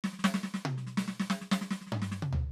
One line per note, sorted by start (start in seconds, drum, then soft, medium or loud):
0.04 snare loud
0.13 snare soft
0.19 snare medium
0.24 snare loud
0.34 snare loud
0.43 snare medium
0.54 snare medium
0.65 high tom loud
0.77 snare soft
0.87 snare medium
0.97 snare loud
1.08 snare medium
1.20 snare loud
1.30 snare medium
1.41 snare medium
1.51 snare loud
1.61 snare medium
1.71 snare loud
1.87 snare soft
1.92 mid tom loud
2.02 snare medium
2.11 snare medium
2.22 high tom loud
2.33 floor tom loud